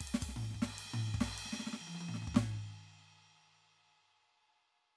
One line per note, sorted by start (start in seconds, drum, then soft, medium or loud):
0.01 kick soft
0.01 ride medium
0.07 ride medium
0.07 percussion soft
0.14 snare medium
0.22 kick medium
0.22 ride loud
0.22 percussion medium
0.29 snare soft
0.37 floor tom medium
0.43 snare soft
0.51 snare soft
0.55 kick soft
0.62 snare medium
0.62 ride medium
0.79 ride medium
0.86 snare soft
0.94 floor tom loud
1.00 snare soft
1.08 snare soft
1.15 kick medium
1.21 snare medium
1.21 ride medium
1.38 ride medium
1.46 snare soft
1.53 snare medium
1.60 snare soft
1.67 snare soft
1.73 snare medium
1.82 high tom soft
1.88 high tom medium
1.95 high tom medium
2.01 high tom medium
2.09 floor tom medium
2.15 snare soft
2.23 floor tom medium
2.28 kick soft
2.35 snare loud
2.35 floor tom medium